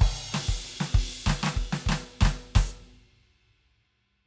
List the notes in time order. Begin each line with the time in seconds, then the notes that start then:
0.01 kick, hi-hat pedal, crash
0.32 snare, hi-hat pedal, ride
0.49 kick, snare
0.55 snare
0.60 snare, hi-hat pedal
0.64 ride
0.81 snare
0.95 kick, ride
1.26 kick, snare
1.30 snare
1.43 snare
1.47 snare
1.57 kick
1.73 snare
1.87 kick, snare, hi-hat pedal
1.92 snare
2.20 kick, snare, hi-hat pedal
2.25 snare
2.55 open hi-hat, kick, snare
2.70 hi-hat pedal